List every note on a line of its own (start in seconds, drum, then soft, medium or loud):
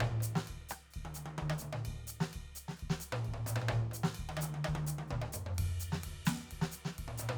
0.01 kick soft
0.01 mid tom loud
0.21 hi-hat pedal loud
0.21 mid tom soft
0.36 snare medium
0.44 hi-hat pedal soft
0.44 ride bell medium
0.50 kick soft
0.69 cross-stick medium
0.69 hi-hat pedal medium
0.91 hi-hat pedal soft
0.91 ride bell soft
0.97 kick soft
1.06 high tom medium
1.15 hi-hat pedal medium
1.15 high tom soft
1.26 high tom medium
1.39 kick soft
1.39 high tom loud
1.48 kick soft
1.48 high tom medium
1.59 hi-hat pedal medium
1.63 mid tom soft
1.73 mid tom medium
1.86 kick soft
1.86 ride bell medium
1.96 kick soft
2.08 hi-hat pedal loud
2.08 ride soft
2.21 snare medium
2.30 hi-hat pedal soft
2.30 ride bell medium
2.36 kick soft
2.56 hi-hat pedal medium
2.56 ride soft
2.69 snare medium
2.77 hi-hat pedal soft
2.77 ride bell soft
2.83 kick soft
2.90 snare medium
3.01 hi-hat pedal medium
3.01 ride soft
3.13 mid tom loud
3.25 kick soft
3.25 ride bell soft
3.34 mid tom medium
3.47 hi-hat pedal loud
3.47 mid tom medium
3.56 mid tom loud
3.62 mid tom medium
3.69 kick soft
3.69 mid tom loud
3.92 hi-hat pedal medium
3.92 mid tom soft
4.04 snare medium
4.15 hi-hat pedal soft
4.15 ride bell medium
4.20 kick soft
4.28 kick soft
4.28 high tom medium
4.37 high tom medium
4.42 hi-hat pedal loud
4.42 high tom medium
4.55 high tom medium
4.65 high tom loud
4.69 kick soft
4.76 kick soft
4.76 high tom loud
4.87 hi-hat pedal loud
4.87 high tom medium
4.99 high tom medium
5.08 hi-hat pedal soft
5.08 mid tom medium
5.13 kick soft
5.21 kick soft
5.21 mid tom medium
5.33 floor tom medium
5.33 hi-hat pedal loud
5.47 floor tom medium
5.54 hi-hat pedal soft
5.59 kick soft
5.59 ride loud
5.69 kick soft
5.80 hi-hat pedal loud
5.80 ride soft
5.93 snare medium
6.01 hi-hat pedal soft
6.01 ride medium
6.07 kick soft
6.26 snare medium
6.26 hi-hat pedal loud
6.51 kick soft
6.51 ride medium
6.62 snare medium
6.72 hi-hat pedal medium
6.72 ride soft
6.85 snare medium
6.93 hi-hat pedal soft
6.99 kick soft
6.99 ride medium
7.07 kick soft
7.07 mid tom medium
7.18 hi-hat pedal loud
7.18 mid tom medium
7.30 mid tom loud